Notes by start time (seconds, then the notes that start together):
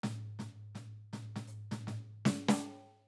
0.03 snare, high tom
0.40 snare, high tom
0.75 snare, high tom
1.13 snare, high tom
1.36 snare, high tom
1.48 hi-hat pedal
1.72 snare, high tom
1.88 snare, high tom
2.26 snare
2.49 snare